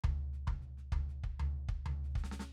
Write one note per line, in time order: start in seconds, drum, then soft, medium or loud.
0.04 kick medium
0.04 floor tom medium
0.33 snare soft
0.47 kick medium
0.47 floor tom medium
0.61 snare soft
0.78 snare soft
0.92 kick medium
0.92 floor tom medium
1.09 snare soft
1.24 kick soft
1.40 floor tom medium
1.69 kick medium
1.86 floor tom medium
2.04 snare soft
2.09 snare soft
2.16 kick medium
2.16 snare soft
2.24 snare soft
2.32 snare soft
2.40 snare soft